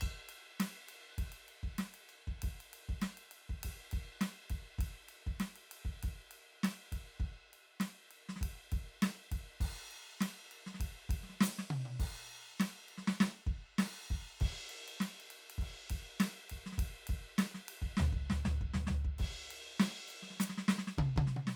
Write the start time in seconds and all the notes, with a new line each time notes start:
0.01 kick, ride bell
0.29 ride
0.60 snare, ride
0.89 ride
1.18 kick, ride
1.32 ride
1.48 ride
1.63 kick
1.78 snare, ride
1.94 ride
2.09 ride bell
2.27 kick
2.42 kick, ride
2.60 ride
2.73 ride
2.89 kick
3.02 snare, ride bell
3.17 ride
3.31 ride
3.49 kick
3.63 kick, ride
3.92 kick, ride
4.21 snare, ride
4.50 kick, ride
4.79 kick, ride
5.09 ride
5.27 kick
5.40 snare, ride
5.56 ride
5.71 ride
5.85 kick
6.03 kick, ride
6.31 ride
6.63 snare, ride
6.92 kick, ride
7.20 kick
7.53 ride
7.80 snare, ride
8.11 ride
8.29 snare
8.36 snare
8.41 kick, ride
8.72 kick, ride
9.02 snare, ride
9.32 kick, ride
9.61 kick, crash
9.91 ride
10.21 snare, ride
10.51 ride
10.67 snare
10.74 snare
10.80 kick, ride
11.09 kick, ride
11.23 snare
11.29 snare
11.36 snare
11.41 snare, hi-hat pedal
11.59 snare
11.70 high tom
11.86 high tom
12.00 kick, crash
12.31 ride
12.60 snare, ride
12.89 ride
12.98 snare
13.08 snare
13.20 snare
13.47 kick
13.79 snare, crash
14.10 kick
14.40 kick, ride
14.70 ride
14.88 ride
15.00 snare, ride
15.20 ride
15.30 ride
15.50 ride
15.58 kick, ride
15.90 kick, ride
16.20 snare, hi-hat pedal, ride
16.50 kick, ride
16.66 snare
16.73 snare
16.78 kick, ride
17.07 kick, ride
17.38 snare, hi-hat pedal, ride
17.55 snare
17.65 hi-hat pedal, ride
17.82 kick
17.97 snare, floor tom
18.12 kick
18.30 snare, floor tom
18.45 snare, floor tom
18.61 kick
18.74 snare, floor tom
18.87 snare, floor tom
19.05 kick
19.19 kick, ride
19.51 ride
19.79 snare, hi-hat pedal, ride
20.07 hi-hat pedal, ride
20.23 snare
20.30 snare
20.37 snare
20.40 snare, hi-hat pedal
20.50 snare
20.58 snare
20.68 snare
20.78 snare
20.87 snare
20.98 kick, high tom
21.16 kick, high tom
21.27 snare
21.37 high tom
21.47 snare